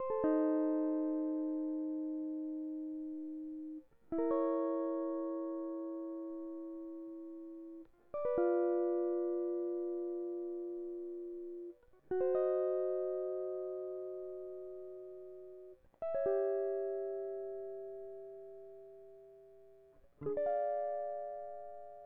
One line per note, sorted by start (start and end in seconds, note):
0.00 3.69 C5
0.12 2.62 A4
0.26 3.89 D#4
4.13 7.92 E4
4.19 7.07 A#4
4.32 7.92 C#5
8.15 11.41 D5
8.26 11.32 B4
8.39 11.82 F4
11.97 15.80 F#4
12.21 14.81 C5
12.35 15.81 D#5
16.03 19.95 E5
16.15 18.06 C#5
16.27 18.86 G4
20.27 22.06 G#4
20.38 22.06 D5
20.47 22.06 F5